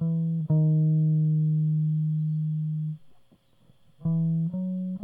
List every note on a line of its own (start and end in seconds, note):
0.03 0.48 E3
0.51 2.96 D#3
4.06 4.50 E3
4.53 4.96 F#3